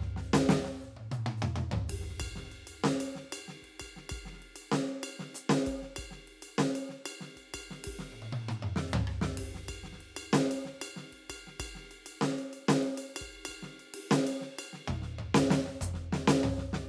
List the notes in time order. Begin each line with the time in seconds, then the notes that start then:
0.01 snare
0.17 snare
0.22 hi-hat pedal
0.33 snare
0.49 snare
0.65 snare
0.80 hi-hat pedal, high tom
0.97 high tom
1.12 hi-hat pedal, high tom
1.26 high tom
1.38 hi-hat pedal
1.42 mid tom
1.56 mid tom
1.72 floor tom
1.87 kick, hi-hat pedal, ride
1.95 kick
2.01 snare
2.09 snare
2.20 kick, ride bell
2.28 kick
2.36 snare
2.44 snare
2.52 ride bell
2.67 ride bell
2.84 snare
2.90 hi-hat pedal
3.00 ride bell
3.15 snare
3.33 hi-hat pedal, ride bell
3.48 snare
3.62 kick, ride
3.80 kick, ride bell
3.96 snare
4.10 kick, ride bell
4.18 kick
4.26 snare
4.33 snare
4.38 snare, ride
4.43 snare
4.56 ride bell
4.72 snare
4.87 snare
4.91 snare
5.03 ride bell
5.19 snare
5.35 hi-hat pedal, ride bell
5.50 snare
5.67 kick, ride bell
5.73 kick
5.82 snare
5.96 kick, ride bell
6.11 snare
6.18 snare
6.28 ride
6.42 ride bell
6.58 snare
6.75 ride bell
6.89 snare
7.06 hi-hat pedal, ride bell
7.21 snare
7.36 kick, ride bell
7.54 kick, ride bell
7.71 snare
7.84 kick, ride
7.99 snare
8.12 high tom
8.33 high tom
8.49 hi-hat pedal, high tom
8.63 mid tom
8.76 snare
8.88 hi-hat pedal
8.93 floor tom
9.07 cross-stick
9.22 snare
9.38 kick, ride
9.46 kick
9.55 snare
9.69 kick, ride bell
9.84 snare
9.93 snare
10.01 ride
10.17 ride bell
10.33 snare
10.51 ride bell
10.65 snare
10.82 hi-hat pedal, ride bell
10.96 snare
11.12 kick, ride
11.30 kick, ride bell
11.47 snare
11.60 kick, ride bell
11.66 kick
11.75 snare
11.83 snare
11.89 snare, ride bell
12.06 ride bell
12.21 snare
12.30 snare
12.39 ride bell
12.53 ride bell
12.69 snare
12.81 hi-hat pedal, ride
12.98 ride bell
13.16 ride bell
13.21 kick
13.45 kick, ride bell
13.63 snare
13.77 snare, ride bell
13.94 ride
14.11 snare
14.27 ride bell
14.41 snare
14.59 hi-hat pedal, ride bell
14.73 snare
14.86 kick, hi-hat pedal, mid tom
14.95 kick
15.02 snare
15.19 floor tom
15.35 snare
15.51 snare
15.66 snare
15.81 kick, hi-hat pedal, mid tom
15.94 snare
16.13 snare
16.28 snare
16.44 floor tom
16.58 snare
16.73 snare